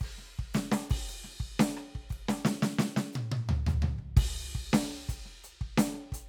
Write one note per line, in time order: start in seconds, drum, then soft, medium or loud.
0.01 kick medium
0.01 hi-hat pedal medium
0.01 crash medium
0.19 snare soft
0.40 kick medium
0.55 snare loud
0.55 hi-hat pedal medium
0.55 ride medium
0.72 snare loud
0.91 kick medium
0.91 crash medium
1.10 hi-hat pedal medium
1.10 ride soft
1.25 snare soft
1.41 kick medium
1.60 snare loud
1.60 hi-hat pedal medium
1.60 ride medium
1.78 cross-stick medium
1.96 kick soft
2.10 kick soft
2.10 hi-hat pedal soft
2.10 ride medium
2.29 snare loud
2.46 snare loud
2.63 snare loud
2.63 hi-hat pedal medium
2.79 snare loud
2.97 snare loud
3.13 hi-hat pedal medium
3.13 high tom loud
3.32 high tom loud
3.50 floor tom loud
3.67 floor tom loud
3.67 hi-hat pedal medium
3.83 floor tom loud
3.99 kick soft
4.17 kick loud
4.17 ride medium
4.17 crash loud
4.56 kick medium
4.74 snare loud
4.74 crash medium
5.10 closed hi-hat medium
5.10 kick medium
5.26 snare soft
5.45 closed hi-hat medium
5.62 kick medium
5.78 closed hi-hat loud
5.78 snare loud
5.94 snare soft
6.13 closed hi-hat loud
6.13 kick soft